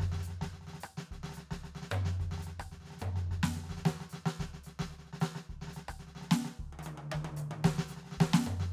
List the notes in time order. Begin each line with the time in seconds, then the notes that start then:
0.01 kick, snare
0.08 kick
0.13 snare
0.19 snare
0.24 snare, hi-hat pedal
0.29 snare
0.42 kick, snare
0.54 snare
0.62 snare
0.68 snare
0.74 snare
0.81 cross-stick, hi-hat pedal
0.98 snare
1.12 kick, snare
1.18 kick
1.24 snare
1.30 snare
1.35 snare, hi-hat pedal
1.52 kick, snare
1.59 kick
1.65 snare
1.76 snare
1.83 snare
1.92 hi-hat pedal, floor tom
2.06 snare
2.21 kick, snare
2.27 kick
2.32 snare
2.39 snare
2.43 hi-hat pedal
2.48 snare
2.60 kick, cross-stick
2.72 snare
2.81 snare
2.85 snare
2.91 snare
2.98 snare, hi-hat pedal
3.03 floor tom
3.17 snare
3.31 kick, snare
3.38 kick
3.44 snare
3.53 snare, hi-hat pedal
3.65 snare
3.70 kick, snare
3.78 snare
3.86 snare
4.01 snare
4.10 snare, hi-hat pedal
4.27 snare
4.40 kick, snare
4.47 kick
4.54 snare
4.64 snare, hi-hat pedal
4.80 kick, snare
4.92 snare
4.99 snare
5.06 snare
5.14 snare
5.21 snare, hi-hat pedal
5.36 snare
5.50 kick, snare
5.56 kick
5.62 snare
5.68 snare
5.74 snare, hi-hat pedal
5.89 kick, cross-stick
6.00 snare
6.08 snare
6.16 snare
6.22 snare
6.29 snare
6.32 snare, hi-hat pedal
6.46 snare
6.60 kick
6.67 kick
6.73 high tom
6.80 hi-hat pedal, high tom
6.87 high tom
6.98 high tom
7.12 kick, high tom
7.21 kick
7.25 high tom
7.37 hi-hat pedal, mid tom
7.52 high tom
7.65 kick, snare
7.79 snare
7.89 snare, hi-hat pedal
7.97 snare
8.04 snare
8.05 snare
8.12 snare
8.18 kick, snare
8.34 snare
8.39 snare
8.44 floor tom, hi-hat pedal
8.61 snare